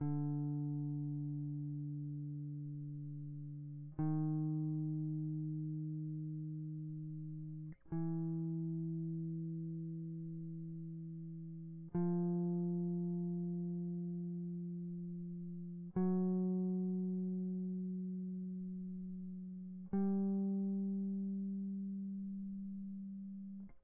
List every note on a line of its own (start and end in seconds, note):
0.03 3.96 D3
4.00 7.76 D#3
7.93 11.95 E3
11.96 15.93 F3
15.97 19.91 F#3
19.94 23.72 G3